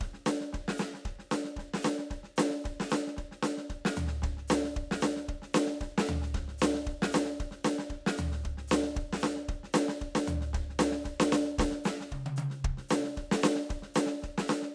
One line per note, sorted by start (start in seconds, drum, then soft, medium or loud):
0.01 kick medium
0.01 snare soft
0.14 snare soft
0.26 snare loud
0.26 hi-hat pedal medium
0.41 snare soft
0.53 kick medium
0.53 snare soft
0.68 snare loud
0.78 snare loud
0.78 hi-hat pedal medium
0.94 snare soft
1.05 kick medium
1.05 snare soft
1.19 snare soft
1.31 snare loud
1.31 hi-hat pedal medium
1.45 snare soft
1.57 kick soft
1.57 snare soft
1.74 snare loud
1.82 snare loud
1.82 hi-hat pedal medium
1.99 snare soft
2.11 kick medium
2.11 snare soft
2.24 snare soft
2.37 snare loud
2.37 hi-hat pedal medium
2.50 snare soft
2.65 kick medium
2.65 snare soft
2.80 snare medium
2.90 snare loud
2.90 hi-hat pedal medium
3.07 snare soft
3.17 kick medium
3.17 snare soft
3.32 snare soft
3.43 snare loud
3.43 hi-hat pedal medium
3.58 snare soft
3.70 kick medium
3.70 snare soft
3.85 snare loud
3.96 floor tom loud
3.96 hi-hat pedal medium
4.08 snare soft
4.22 kick medium
4.22 snare medium
4.37 snare soft
4.48 snare loud
4.48 hi-hat pedal medium
4.64 snare soft
4.76 kick medium
4.76 snare soft
4.91 snare loud
5.01 snare loud
5.01 hi-hat pedal medium
5.17 snare soft
5.29 kick medium
5.29 snare soft
5.42 snare soft
5.54 snare loud
5.54 hi-hat pedal medium
5.67 snare soft
5.81 kick medium
5.81 snare soft
5.98 snare loud
6.06 floor tom loud
6.06 hi-hat pedal medium
6.22 snare soft
6.35 kick medium
6.35 snare medium
6.48 snare soft
6.58 snare loud
6.58 hi-hat pedal medium
6.74 snare soft
6.87 kick medium
6.87 snare soft
7.02 snare loud
7.12 snare loud
7.12 hi-hat pedal medium
7.25 snare soft
7.40 kick medium
7.40 snare soft
7.51 snare soft
7.64 snare loud
7.64 hi-hat pedal medium
7.79 snare medium
7.90 kick medium
7.90 snare soft
8.07 snare loud
8.17 floor tom loud
8.17 hi-hat pedal medium
8.32 snare soft
8.44 kick medium
8.44 snare soft
8.58 snare soft
8.68 snare loud
8.68 hi-hat pedal medium
8.83 snare soft
8.95 kick medium
8.95 snare soft
9.13 snare loud
9.20 snare loud
9.20 hi-hat pedal medium
9.36 snare soft
9.49 kick medium
9.49 snare soft
9.64 snare soft
9.73 snare loud
9.73 hi-hat pedal medium
9.89 snare medium
9.97 hi-hat pedal soft
10.01 kick medium
10.01 snare soft
10.15 snare loud
10.27 floor tom loud
10.27 hi-hat pedal medium
10.41 snare soft
10.54 kick medium
10.54 snare medium
10.70 snare soft
10.79 snare loud
10.79 hi-hat pedal medium
10.92 snare soft
11.03 kick medium
11.03 snare soft
11.03 hi-hat pedal soft
11.20 snare loud
11.32 snare loud
11.32 hi-hat pedal medium
11.44 snare soft
11.59 kick medium
11.59 snare loud
11.71 snare soft
11.84 snare loud
11.84 hi-hat pedal medium
12.01 snare soft
12.12 kick medium
12.12 high tom loud
12.26 high tom loud
12.37 hi-hat pedal medium
12.37 high tom loud
12.50 snare soft
12.65 kick loud
12.78 snare soft
12.89 snare loud
12.89 hi-hat pedal medium
13.04 snare soft
13.17 kick medium
13.17 snare soft
13.32 snare loud
13.42 snare loud
13.42 hi-hat pedal medium
13.56 snare soft
13.70 kick medium
13.70 snare soft
13.83 snare soft
13.95 snare loud
13.95 hi-hat pedal medium
14.06 snare medium
14.23 kick soft
14.23 snare soft
14.38 snare loud
14.48 snare loud
14.48 hi-hat pedal medium
14.62 snare soft